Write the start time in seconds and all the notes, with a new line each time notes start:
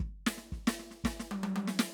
0.00 kick
0.26 snare
0.37 snare
0.52 kick, snare
0.67 snare
0.79 snare
0.91 snare
1.04 kick, snare
1.20 snare
1.31 high tom
1.43 high tom
1.56 high tom
1.68 snare
1.79 snare